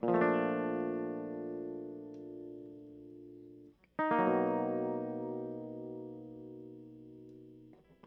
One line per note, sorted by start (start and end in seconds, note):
0.04 3.75 A#2
0.09 3.74 F3
0.14 3.73 A3
0.21 3.74 D4
3.99 7.76 D#4
4.11 7.77 A#3
4.19 8.04 F#3
4.28 7.75 B2